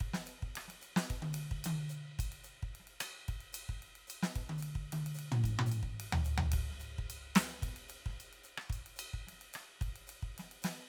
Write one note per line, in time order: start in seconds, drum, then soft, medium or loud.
0.01 kick soft
0.01 ride medium
0.07 kick soft
0.14 snare medium
0.26 hi-hat pedal medium
0.26 ride medium
0.43 kick soft
0.56 cross-stick medium
0.56 ride medium
0.68 snare soft
0.68 ride medium
0.82 hi-hat pedal medium
0.82 ride medium
0.97 snare medium
1.10 kick soft
1.10 ride medium
1.23 open hi-hat soft
1.23 high tom loud
1.34 hi-hat pedal medium
1.34 ride loud
1.52 kick soft
1.57 kick soft
1.65 high tom loud
1.65 ride bell medium
1.90 hi-hat pedal medium
2.19 kick soft
2.19 ride bell medium
2.25 kick soft
2.32 ride medium
2.44 hi-hat pedal medium
2.44 ride medium
2.63 kick soft
2.76 ride medium
2.80 snare soft
2.88 ride medium
3.00 cross-stick medium
3.00 hi-hat pedal soft
3.00 ride bell loud
3.28 kick soft
3.28 snare soft
3.28 ride medium
3.41 ride soft
3.53 hi-hat pedal medium
3.53 ride bell medium
3.69 kick soft
3.69 snare soft
3.77 snare soft
3.80 snare soft
3.83 snare soft
3.83 ride medium
3.96 ride soft
4.08 hi-hat pedal soft
4.08 ride bell medium
4.23 snare medium
4.36 kick soft
4.36 ride medium
4.42 kick soft
4.50 high tom medium
4.59 hi-hat pedal medium
4.63 ride medium
4.76 kick soft
4.82 kick soft
4.93 high tom loud
4.93 ride medium
5.07 ride medium
5.15 hi-hat pedal medium
5.19 ride medium
5.32 mid tom loud
5.44 kick soft
5.44 ride bell medium
5.50 kick soft
5.59 mid tom loud
5.67 hi-hat pedal medium
5.72 ride bell medium
5.83 kick soft
6.00 ride loud
6.13 floor tom loud
6.25 hi-hat pedal medium
6.25 ride medium
6.38 floor tom loud
6.52 kick soft
6.52 ride loud
6.60 kick soft
6.72 snare soft
6.78 snare soft
6.78 hi-hat pedal soft
6.81 snare soft
6.81 ride soft
6.86 snare soft
6.99 kick soft
6.99 snare soft
7.04 kick soft
7.10 ride bell medium
7.36 snare loud
7.36 hi-hat pedal medium
7.36 ride loud
7.63 kick soft
7.63 snare soft
7.63 ride medium
7.68 kick soft
7.68 snare soft
7.74 snare soft
7.74 ride medium
7.77 snare soft
7.89 hi-hat pedal soft
7.89 ride medium
8.06 kick soft
8.06 snare soft
8.15 snare soft
8.19 snare soft
8.19 ride bell medium
8.33 ride soft
8.44 hi-hat pedal medium
8.44 ride soft
8.58 cross-stick medium
8.70 kick soft
8.70 ride bell medium
8.76 kick soft
8.87 ride medium
8.96 hi-hat pedal soft
8.96 ride bell loud
9.14 kick soft
9.28 snare soft
9.28 ride medium
9.33 snare soft
9.42 ride medium
9.53 cross-stick medium
9.53 hi-hat pedal soft
9.53 ride medium
9.79 kick soft
9.79 snare soft
9.79 ride medium
9.88 kick soft
9.94 snare soft
9.94 ride medium
10.01 snare soft
10.07 hi-hat pedal soft
10.07 ride medium
10.23 kick soft
10.39 snare soft
10.39 ride medium
10.52 ride medium
10.63 snare medium
10.63 hi-hat pedal medium
10.63 ride loud